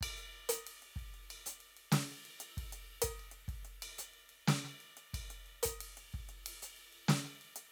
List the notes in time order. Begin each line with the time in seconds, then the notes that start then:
0.01 kick, ride bell
0.17 closed hi-hat
0.32 ride
0.49 closed hi-hat
0.67 ride
0.82 closed hi-hat
0.96 kick, ride
1.14 closed hi-hat
1.30 ride bell
1.46 closed hi-hat
1.60 ride
1.77 ride
1.92 snare, ride
2.11 snare
2.25 ride
2.40 closed hi-hat
2.57 kick, cross-stick, floor tom, ride
2.72 closed hi-hat
2.88 ride
3.02 kick, closed hi-hat
3.19 ride bell
3.31 closed hi-hat
3.48 kick, ride
3.65 closed hi-hat
3.82 ride bell
3.98 closed hi-hat
4.14 ride
4.29 ride
4.47 snare, ride bell
4.64 snare
4.80 ride
4.97 closed hi-hat
5.14 kick, ride bell
5.30 closed hi-hat
5.46 ride
5.63 closed hi-hat, kick
5.81 ride
5.97 closed hi-hat
6.13 kick, ride
6.29 closed hi-hat
6.46 ride
6.62 closed hi-hat
6.76 ride
6.93 ride
7.08 snare, ride bell
7.24 snare
7.41 ride
7.56 closed hi-hat